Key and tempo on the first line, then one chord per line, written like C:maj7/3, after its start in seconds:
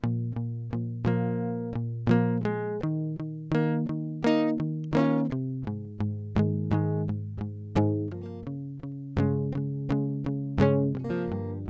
F minor, 85 BPM
0.00 A#:(1,5)
2.82 D#:sus2(b7)
5.65 G#:sus2
8.47 C#:(1,5,#11)/b5
11.29 G:7